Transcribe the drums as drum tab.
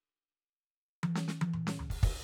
CC |---------------x|x---------------|
SD |---------oo--o--|----------------|
T1 |--------o--o----|----------------|
T2 |------------o---|----------------|
FT |--------------o-|----------------|
BD |---------------o|o---------------|